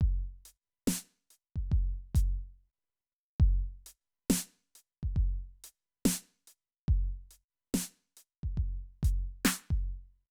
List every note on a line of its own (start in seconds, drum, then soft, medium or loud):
0.01 kick medium
0.45 closed hi-hat medium
0.88 snare loud
1.31 closed hi-hat soft
1.56 kick soft
1.72 kick medium
2.15 closed hi-hat medium
2.15 kick medium
3.40 kick medium
3.86 closed hi-hat medium
4.30 snare loud
4.75 closed hi-hat medium
5.03 kick soft
5.16 kick medium
5.64 closed hi-hat medium
6.05 snare loud
6.48 closed hi-hat medium
6.88 kick medium
7.31 closed hi-hat medium
7.74 snare loud
8.17 closed hi-hat medium
8.43 kick soft
8.58 kick medium
9.03 kick medium
9.03 closed hi-hat medium
9.45 snare loud
9.71 kick medium